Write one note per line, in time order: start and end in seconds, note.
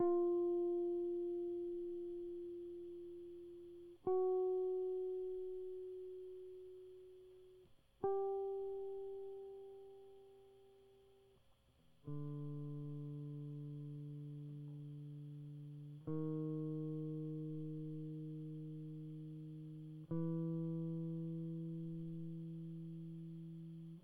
0.00 3.98 F4
4.07 7.65 F#4
8.04 11.22 G4
16.08 20.07 D#3
20.11 24.02 E3